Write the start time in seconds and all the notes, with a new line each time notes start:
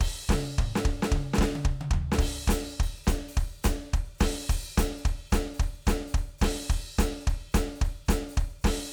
0.01 kick, crash
0.25 hi-hat pedal
0.29 kick, snare, high tom
0.59 kick, mid tom
0.76 snare, hi-hat pedal
0.85 kick
1.03 snare
1.12 kick, high tom
1.34 snare, hi-hat pedal
1.39 kick, snare
1.56 high tom
1.65 kick
1.81 high tom
1.91 kick, floor tom
2.12 snare
2.19 kick, crash
2.48 closed hi-hat, kick, snare, hi-hat pedal
2.69 open hi-hat
2.80 kick, open hi-hat
3.04 kick, snare, hi-hat pedal
3.08 closed hi-hat
3.29 open hi-hat
3.37 open hi-hat, kick
3.62 closed hi-hat, kick, snare, hi-hat pedal
3.93 open hi-hat, kick
4.19 kick, snare, hi-hat pedal, crash
4.50 open hi-hat, kick
4.76 closed hi-hat, kick, snare, hi-hat pedal
4.97 open hi-hat
5.05 open hi-hat, kick
5.30 closed hi-hat, kick, snare, hi-hat pedal
5.54 open hi-hat
5.60 open hi-hat, kick
5.86 closed hi-hat, kick, snare, hi-hat pedal
6.08 open hi-hat
6.15 open hi-hat, kick
6.39 kick, snare, hi-hat pedal, crash
6.70 open hi-hat, kick
6.97 closed hi-hat, kick, snare, hi-hat pedal
7.20 open hi-hat
7.27 open hi-hat, kick
7.52 closed hi-hat, kick, snare, hi-hat pedal
7.75 open hi-hat
7.82 open hi-hat, kick
8.07 closed hi-hat, kick, snare, hi-hat pedal
8.29 open hi-hat
8.38 open hi-hat, kick
8.62 kick, snare, hi-hat pedal, crash